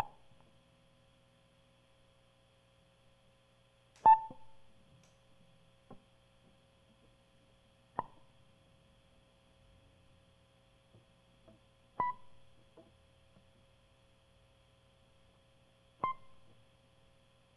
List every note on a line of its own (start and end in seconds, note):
0.00 0.07 G#5
4.06 4.16 A5
7.99 8.05 A#5
12.00 12.12 B5
16.04 16.15 C6